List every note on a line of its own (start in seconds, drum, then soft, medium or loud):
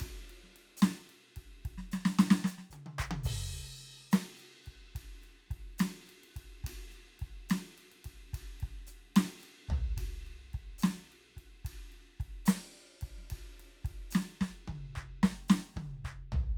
0.01 kick soft
0.01 ride loud
0.09 kick soft
0.19 snare soft
0.31 ride medium
0.44 snare soft
0.50 snare soft
0.57 ride medium
0.78 hi-hat pedal medium
0.83 snare loud
0.83 ride loud
1.10 ride medium
1.37 kick soft
1.37 ride medium
1.66 kick soft
1.66 ride medium
1.72 kick soft
1.79 snare soft
1.93 snare medium
1.93 hi-hat pedal medium
2.06 snare loud
2.20 snare loud
2.20 hi-hat pedal medium
2.32 snare loud
2.45 snare loud
2.45 hi-hat pedal medium
2.59 snare soft
2.71 kick soft
2.71 hi-hat pedal soft
2.71 high tom medium
2.87 high tom medium
2.99 kick soft
2.99 percussion loud
2.99 hi-hat pedal medium
3.12 high tom loud
3.25 kick soft
3.25 hi-hat pedal medium
3.25 crash loud
3.33 kick soft
3.78 snare soft
3.78 ride soft
4.13 snare loud
4.13 hi-hat pedal medium
4.13 ride loud
4.38 hi-hat pedal soft
4.38 ride soft
4.65 kick soft
4.65 snare soft
4.65 hi-hat pedal soft
4.65 ride soft
4.96 kick soft
4.96 ride medium
5.23 hi-hat pedal soft
5.23 ride soft
5.48 kick soft
5.48 snare soft
5.52 ride medium
5.80 snare loud
5.80 hi-hat pedal medium
5.80 ride loud
6.04 snare soft
6.04 hi-hat pedal soft
6.10 snare soft
6.10 ride medium
6.14 snare soft
6.25 ride medium
6.34 kick soft
6.34 hi-hat pedal soft
6.34 ride medium
6.65 kick soft
6.65 ride loud
6.92 hi-hat pedal soft
6.92 ride soft
7.20 kick soft
7.20 ride medium
7.50 snare medium
7.50 hi-hat pedal medium
7.50 ride loud
7.78 snare soft
7.78 hi-hat pedal soft
7.78 ride medium
7.84 snare soft
7.89 snare soft
7.92 snare soft
7.92 ride soft
7.96 snare soft
8.06 kick soft
8.06 ride medium
8.34 kick soft
8.34 ride medium
8.61 kick soft
8.61 snare soft
8.61 ride medium
8.69 kick soft
8.88 hi-hat pedal medium
8.88 ride medium
9.17 snare loud
9.17 ride loud
9.41 snare soft
9.41 hi-hat pedal soft
9.41 ride medium
9.49 snare soft
9.58 snare soft
9.62 snare soft
9.69 kick soft
9.69 snare soft
9.69 floor tom loud
9.98 kick soft
9.98 ride loud
10.04 kick soft
10.28 ride soft
10.55 kick soft
10.55 ride soft
10.80 hi-hat pedal medium
10.84 snare loud
10.84 ride loud
10.96 snare soft
11.13 ride soft
11.31 snare soft
11.38 kick soft
11.38 ride soft
11.66 kick soft
11.66 ride medium
11.93 ride soft
12.21 kick soft
12.21 ride medium
12.47 snare loud
12.47 hi-hat pedal loud
12.47 ride medium
13.02 kick soft
13.02 ride medium
13.19 snare soft
13.25 snare soft
13.31 kick soft
13.31 ride medium
13.61 ride medium
13.86 kick soft
13.86 ride medium
13.92 kick soft
14.12 hi-hat pedal medium
14.12 ride loud
14.16 snare loud
14.42 kick soft
14.42 snare loud
14.69 kick soft
14.69 high tom loud
14.75 kick soft
14.96 kick soft
14.96 percussion medium
15.04 kick soft
15.24 kick soft
15.24 snare loud
15.31 kick soft
15.49 snare loud
15.49 hi-hat pedal medium
15.75 kick soft
15.75 snare soft
15.75 high tom loud
15.83 kick soft
15.83 snare soft
15.90 snare soft
16.06 kick soft
16.06 percussion medium
16.11 kick soft
16.33 kick soft
16.33 floor tom loud
16.41 kick soft